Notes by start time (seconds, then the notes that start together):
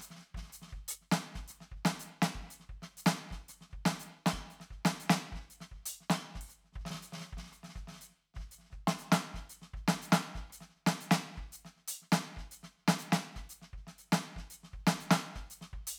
0.01 cross-stick, hi-hat pedal
0.11 snare
0.14 snare
0.17 snare
0.20 snare
0.25 snare
0.35 kick, snare
0.42 snare
0.46 snare
0.50 cross-stick, hi-hat pedal, open hi-hat
0.62 snare
0.67 snare
0.73 kick, snare
0.89 open hi-hat, hi-hat pedal
1.02 snare
1.12 snare
1.35 kick, snare
1.43 snare
1.48 cross-stick, snare, hi-hat pedal
1.61 snare
1.72 kick, snare
1.86 snare
1.90 cross-stick
1.99 cross-stick, snare, hi-hat pedal
2.22 snare
2.27 cross-stick
2.35 kick
2.47 cross-stick, snare, hi-hat pedal
2.60 snare
2.64 cross-stick
2.70 kick, snare
2.83 snare
2.94 snare, hi-hat pedal
3.07 snare
3.12 cross-stick
3.21 snare
3.32 kick, snare
3.42 snare
3.49 cross-stick, snare, hi-hat pedal
3.61 snare
3.70 kick, snare
3.86 snare
3.92 snare
4.00 cross-stick, snare, hi-hat pedal
4.19 snare
4.27 snare
4.33 kick, cross-stick
4.43 snare
4.50 cross-stick, snare, hi-hat pedal
4.61 snare
4.71 kick, snare
4.75 snare
4.86 snare
4.99 snare, hi-hat pedal
5.10 snare
5.15 snare
5.33 kick, snare
5.40 snare
5.49 snare, hi-hat pedal
5.61 snare
5.72 kick, snare
5.75 snare
5.86 closed hi-hat
6.01 snare
6.10 snare
6.35 kick, snare
6.42 snare, open hi-hat
6.49 cross-stick, hi-hat pedal
6.65 snare
6.73 kick, snare
6.77 cross-stick, snare
6.86 snare
6.91 snare
6.95 snare
7.01 snare, hi-hat pedal
7.13 snare
7.17 snare
7.21 snare
7.28 snare
7.33 kick
7.38 snare
7.42 snare
7.46 snare
7.49 cross-stick, snare, hi-hat pedal
7.64 snare
7.68 cross-stick, snare
7.76 kick, snare
7.88 snare
7.92 snare
7.95 snare
7.98 snare
8.01 snare, closed hi-hat, hi-hat pedal
8.10 snare
8.35 kick, snare
8.37 snare
8.39 snare
8.48 snare
8.51 snare, hi-hat pedal
8.59 snare
8.62 snare
8.64 snare
8.71 kick, snare
8.76 cross-stick
8.88 snare
8.99 snare, hi-hat pedal
9.12 snare
9.17 snare
9.35 kick, snare
9.50 snare, hi-hat pedal
9.62 snare
9.74 kick, snare
9.88 snare
10.00 snare, hi-hat pedal
10.13 snare
10.18 cross-stick
10.35 kick, snare
10.48 snare
10.50 cross-stick, snare, hi-hat pedal
10.61 snare
10.70 snare
10.76 snare
10.87 snare
11.00 snare, hi-hat pedal
11.12 snare
11.16 cross-stick
11.35 kick, snare
11.40 snare
11.53 hi-hat pedal
11.65 snare
11.75 snare
11.88 closed hi-hat
12.02 snare
12.12 snare
12.17 cross-stick
12.26 cross-stick
12.37 kick, snare
12.51 snare, hi-hat pedal
12.64 snare
12.75 snare
12.88 snare
12.99 cross-stick, hi-hat pedal
13.12 snare
13.18 snare
13.36 kick, snare
13.46 snare, hi-hat pedal
13.51 snare
13.62 snare
13.74 kick, snare
13.76 snare
13.88 snare
13.95 snare, hi-hat pedal
14.00 snare
14.13 snare
14.37 kick, snare
14.45 snare
14.49 snare, hi-hat pedal
14.51 snare, closed hi-hat
14.64 snare
14.71 kick, snare
14.76 snare
14.87 snare
15.00 snare, hi-hat pedal
15.11 snare
15.16 snare
15.35 kick, snare
15.47 snare
15.51 snare, hi-hat pedal
15.62 snare
15.73 kick, cross-stick, snare
15.87 closed hi-hat